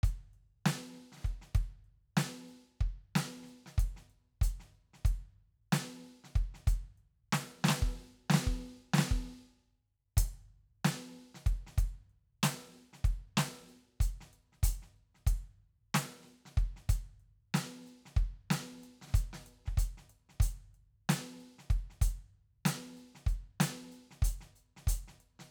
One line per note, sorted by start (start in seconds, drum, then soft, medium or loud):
0.02 closed hi-hat soft
0.02 kick medium
0.07 crash soft
0.33 closed hi-hat soft
0.66 snare loud
0.66 closed hi-hat soft
0.94 snare soft
0.94 closed hi-hat soft
1.12 snare soft
1.16 snare soft
1.19 snare soft
1.22 kick medium
1.22 snare soft
1.22 closed hi-hat soft
1.41 snare soft
1.55 kick medium
1.55 closed hi-hat soft
1.84 closed hi-hat soft
2.17 closed hi-hat medium
2.17 snare loud
2.48 closed hi-hat soft
2.81 kick medium
2.81 closed hi-hat soft
3.15 closed hi-hat medium
3.15 snare loud
3.43 snare soft
3.48 closed hi-hat soft
3.66 snare soft
3.78 kick medium
3.78 closed hi-hat medium
3.96 snare soft
4.10 closed hi-hat soft
4.41 closed hi-hat medium
4.41 kick medium
4.60 snare soft
4.65 snare soft
4.75 closed hi-hat soft
4.93 snare soft
5.05 kick medium
5.05 closed hi-hat medium
5.72 closed hi-hat medium
5.72 snare loud
6.01 snare soft
6.01 closed hi-hat soft
6.24 snare soft
6.35 kick medium
6.35 closed hi-hat soft
6.54 snare soft
6.67 closed hi-hat medium
6.67 kick medium
6.97 closed hi-hat soft
7.32 closed hi-hat medium
7.32 snare loud
7.64 snare loud
7.68 snare loud
7.82 kick medium
8.30 snare loud
8.34 snare loud
8.47 kick medium
8.93 snare loud
8.98 snare loud
9.11 kick medium
10.17 kick medium
10.17 closed hi-hat loud
10.84 closed hi-hat medium
10.84 snare loud
11.34 snare soft
11.46 kick medium
11.46 closed hi-hat soft
11.66 snare soft
11.78 kick medium
11.78 closed hi-hat medium
12.09 closed hi-hat soft
12.43 closed hi-hat loud
12.43 snare loud
12.93 snare soft
13.04 kick medium
13.04 closed hi-hat soft
13.37 closed hi-hat medium
13.37 snare loud
13.69 closed hi-hat soft
14.00 closed hi-hat medium
14.00 kick medium
14.20 snare soft
14.33 closed hi-hat soft
14.52 snare soft
14.63 closed hi-hat loud
14.63 kick medium
14.82 snare soft
14.96 closed hi-hat soft
15.14 snare soft
15.27 kick medium
15.27 closed hi-hat medium
15.94 closed hi-hat loud
15.94 snare loud
16.22 snare soft
16.28 closed hi-hat soft
16.45 snare soft
16.57 kick medium
16.57 closed hi-hat soft
16.76 snare soft
16.89 closed hi-hat medium
16.89 kick medium
17.20 closed hi-hat soft
17.54 closed hi-hat medium
17.54 snare loud
17.86 closed hi-hat soft
18.05 snare soft
18.16 kick medium
18.16 closed hi-hat soft
18.50 closed hi-hat medium
18.50 snare loud
18.83 closed hi-hat soft
19.01 snare soft
19.06 snare soft
19.08 snare soft
19.10 kick medium
19.10 snare soft
19.15 closed hi-hat medium
19.33 snare medium
19.46 closed hi-hat soft
19.65 kick soft
19.65 snare soft
19.77 closed hi-hat medium
19.77 kick medium
19.97 snare soft
20.09 closed hi-hat soft
20.29 snare soft
20.40 closed hi-hat medium
20.40 kick medium
20.74 closed hi-hat soft
21.09 closed hi-hat medium
21.09 snare loud
21.40 closed hi-hat soft
21.58 snare soft
21.70 kick medium
21.70 closed hi-hat soft
21.90 snare soft
22.01 closed hi-hat medium
22.01 kick medium
22.65 closed hi-hat loud
22.65 snare loud
22.96 closed hi-hat soft
23.15 snare soft
23.26 closed hi-hat soft
23.26 kick medium
23.60 closed hi-hat loud
23.60 snare loud
23.91 closed hi-hat soft
24.11 snare soft
24.22 closed hi-hat loud
24.22 kick medium
24.41 snare soft
24.55 closed hi-hat soft
24.76 snare soft
24.87 closed hi-hat loud
24.87 kick medium
25.08 snare soft
25.20 closed hi-hat soft
25.39 snare soft